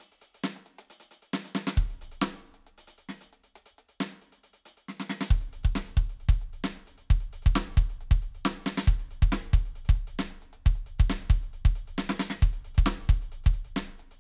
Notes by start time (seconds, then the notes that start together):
0.01 closed hi-hat
0.13 closed hi-hat
0.22 closed hi-hat
0.35 closed hi-hat
0.45 snare
0.57 closed hi-hat
0.67 closed hi-hat
0.80 closed hi-hat
0.91 closed hi-hat
1.01 closed hi-hat
1.12 closed hi-hat
1.23 closed hi-hat
1.34 snare
1.46 closed hi-hat
1.56 snare
1.68 snare
1.78 closed hi-hat, kick
1.91 closed hi-hat
2.02 closed hi-hat
2.12 closed hi-hat
2.22 snare
2.34 closed hi-hat
2.46 closed hi-hat
2.55 closed hi-hat
2.68 closed hi-hat
2.79 closed hi-hat
2.88 closed hi-hat
2.99 closed hi-hat
3.10 snare
3.22 closed hi-hat
3.34 closed hi-hat
3.45 closed hi-hat
3.56 closed hi-hat
3.67 closed hi-hat
3.79 closed hi-hat
3.90 closed hi-hat
4.01 snare
4.11 closed hi-hat
4.22 closed hi-hat
4.33 closed hi-hat
4.44 closed hi-hat
4.54 closed hi-hat
4.66 closed hi-hat
4.78 closed hi-hat
4.89 snare
5.01 snare
5.11 snare
5.22 snare
5.31 closed hi-hat, kick
5.42 closed hi-hat
5.54 closed hi-hat
5.64 closed hi-hat, kick
5.76 snare
5.88 closed hi-hat
5.98 kick, closed hi-hat
6.10 closed hi-hat
6.21 closed hi-hat
6.30 closed hi-hat, kick
6.42 closed hi-hat
6.54 closed hi-hat
6.65 snare
6.77 closed hi-hat
6.88 closed hi-hat
6.99 closed hi-hat
7.11 kick, closed hi-hat
7.21 closed hi-hat
7.34 closed hi-hat
7.43 closed hi-hat, kick
7.56 snare
7.67 closed hi-hat
7.78 closed hi-hat, kick
7.91 closed hi-hat
8.02 closed hi-hat
8.12 closed hi-hat, kick
8.23 closed hi-hat
8.35 closed hi-hat
8.46 snare
8.57 closed hi-hat
8.67 snare
8.78 snare
8.88 closed hi-hat, kick
9.00 closed hi-hat
9.12 closed hi-hat
9.23 closed hi-hat, kick
9.33 snare
9.45 closed hi-hat
9.54 closed hi-hat, kick
9.76 closed hi-hat
9.86 closed hi-hat
9.90 kick
9.96 closed hi-hat
10.08 closed hi-hat
10.20 snare
10.31 closed hi-hat
10.43 closed hi-hat
10.54 closed hi-hat
10.66 kick, closed hi-hat
10.76 closed hi-hat
10.87 closed hi-hat
11.00 closed hi-hat, kick
11.11 snare
11.22 closed hi-hat
11.31 closed hi-hat, kick
11.44 closed hi-hat
11.54 closed hi-hat
11.66 closed hi-hat, kick
11.76 closed hi-hat
11.88 closed hi-hat
11.99 snare
12.10 snare
12.20 snare
12.31 snare
12.43 closed hi-hat, kick
12.54 closed hi-hat
12.65 closed hi-hat
12.75 closed hi-hat, kick
12.87 snare
13.01 closed hi-hat
13.10 closed hi-hat, kick
13.23 closed hi-hat
13.33 closed hi-hat
13.45 closed hi-hat, kick
13.54 closed hi-hat
13.65 closed hi-hat
13.77 snare
13.88 closed hi-hat
14.00 closed hi-hat
14.12 closed hi-hat